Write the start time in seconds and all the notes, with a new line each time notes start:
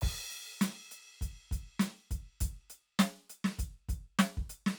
0.01 kick, hi-hat pedal, crash
0.31 closed hi-hat
0.61 closed hi-hat, snare
0.91 closed hi-hat
1.21 closed hi-hat, kick
1.51 closed hi-hat, kick
1.79 closed hi-hat, snare
2.11 closed hi-hat, kick
2.41 closed hi-hat, kick
2.70 closed hi-hat
2.99 closed hi-hat, snare
3.30 closed hi-hat
3.44 snare
3.59 closed hi-hat, kick
3.89 closed hi-hat, kick
4.19 closed hi-hat, snare
4.37 kick
4.50 closed hi-hat
4.66 snare